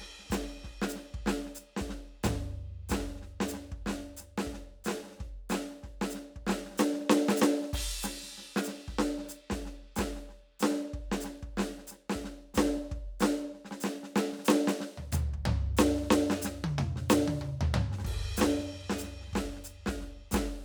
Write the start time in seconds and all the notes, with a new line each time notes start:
0.01 snare
0.19 snare
0.24 snare
0.28 kick, snare
0.31 snare, hi-hat pedal
0.32 snare
0.49 snare
0.56 snare
0.64 kick, snare
0.82 snare
0.89 hi-hat pedal
0.96 snare
1.14 kick
1.26 snare
1.46 snare
1.55 hi-hat pedal
1.61 snare
1.77 snare
1.81 kick
1.90 snare
2.24 kick, snare, hi-hat pedal, floor tom
2.89 kick, snare, hi-hat pedal
2.92 snare
2.98 snare
3.03 snare
3.09 snare
3.16 snare
3.22 snare
3.41 snare
3.48 hi-hat pedal
3.54 snare
3.72 kick
3.86 snare
3.89 snare
4.09 snare
4.17 snare, hi-hat pedal
4.38 snare
4.47 kick
4.54 snare
4.85 snare, hi-hat pedal
4.89 snare
4.97 snare
5.03 snare
5.11 snare
5.18 kick, snare
5.50 snare, hi-hat pedal
5.52 snare
5.71 snare
5.83 kick, snare
6.02 snare
6.10 hi-hat pedal
6.15 snare
6.36 kick
6.47 snare
6.50 snare
6.66 snare
6.70 snare
6.74 snare, hi-hat pedal
6.80 snare
6.94 snare
7.00 snare
7.04 snare
7.09 snare
7.16 snare
7.29 snare
7.37 hi-hat pedal
7.42 snare
7.62 snare
7.73 kick, crash
8.03 snare, hi-hat pedal
8.23 snare
8.28 snare
8.31 snare
8.34 snare
8.38 snare
8.56 snare
8.64 hi-hat pedal
8.68 snare
8.88 kick, snare
8.99 snare
9.18 snare
9.23 snare
9.27 snare, hi-hat pedal
9.31 snare
9.50 kick, snare
9.66 snare
9.96 kick, snare, hi-hat pedal
9.99 snare
10.16 snare
10.29 snare
10.60 snare, hi-hat pedal
10.63 snare
10.75 snare
10.80 snare
10.85 snare
10.91 kick, snare
10.95 snare
11.12 snare
11.21 hi-hat pedal
11.25 snare
11.43 kick
11.58 snare
11.60 snare
11.79 snare
11.87 hi-hat pedal
11.92 snare
12.10 snare
12.15 kick
12.25 snare
12.54 kick, snare, hi-hat pedal
12.58 snare
12.66 snare
12.69 snare
12.76 snare
12.85 snare
12.90 kick, snare
13.20 snare, hi-hat pedal
13.23 snare
13.40 snare
13.54 snare
13.65 snare
13.71 snare
13.81 snare, hi-hat pedal
14.03 snare
14.16 snare
14.33 snare
14.39 snare
14.44 snare, hi-hat pedal
14.49 snare
14.53 snare
14.68 snare
14.81 snare
14.98 floor tom
15.12 floor tom, hi-hat pedal
15.34 kick
15.46 floor tom
15.77 snare, hi-hat pedal
15.96 snare
16.03 snare
16.07 snare
16.11 snare
16.30 snare
16.42 snare, hi-hat pedal
16.64 high tom
16.79 mid tom
16.96 snare
17.10 snare, hi-hat pedal
17.28 high tom
17.42 high tom
17.61 floor tom
17.74 floor tom
17.92 snare
17.99 snare
18.04 kick, snare, ride
18.37 snare, hi-hat pedal
18.42 snare
18.59 snare
18.73 snare
18.90 snare
18.99 hi-hat pedal
19.04 snare
19.21 snare
19.28 snare
19.32 kick, snare
19.36 snare
19.56 snare
19.64 hi-hat pedal
19.86 kick, snare
20.01 snare
20.32 kick, snare, hi-hat pedal
20.34 snare
20.40 snare
20.45 snare
20.53 snare
20.60 snare